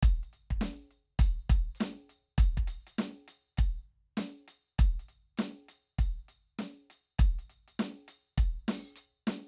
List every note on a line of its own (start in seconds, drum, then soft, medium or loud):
0.03 kick loud
0.03 closed hi-hat loud
0.23 closed hi-hat soft
0.33 closed hi-hat medium
0.51 kick medium
0.61 snare loud
0.61 closed hi-hat loud
0.91 closed hi-hat soft
1.19 closed hi-hat loud
1.19 kick loud
1.50 kick loud
1.50 closed hi-hat loud
1.75 hi-hat pedal medium
1.80 snare loud
1.80 closed hi-hat loud
2.10 closed hi-hat medium
2.38 kick loud
2.38 closed hi-hat loud
2.57 kick medium
2.68 closed hi-hat loud
2.87 closed hi-hat medium
2.98 snare loud
2.98 closed hi-hat loud
3.28 closed hi-hat loud
3.58 kick loud
3.58 closed hi-hat loud
4.17 closed hi-hat loud
4.17 snare loud
4.48 closed hi-hat loud
4.79 kick loud
4.79 closed hi-hat loud
5.00 closed hi-hat medium
5.09 closed hi-hat medium
5.38 closed hi-hat loud
5.38 snare loud
5.69 closed hi-hat loud
5.99 kick medium
5.99 closed hi-hat loud
6.29 closed hi-hat medium
6.59 snare loud
6.59 closed hi-hat loud
6.90 closed hi-hat medium
7.19 kick loud
7.19 closed hi-hat loud
7.39 closed hi-hat medium
7.50 closed hi-hat medium
7.68 closed hi-hat medium
7.79 snare loud
7.79 closed hi-hat loud
8.08 closed hi-hat loud
8.38 kick loud
8.38 closed hi-hat loud
8.68 snare loud
8.68 percussion loud
8.96 hi-hat pedal loud
9.27 snare loud
9.27 closed hi-hat loud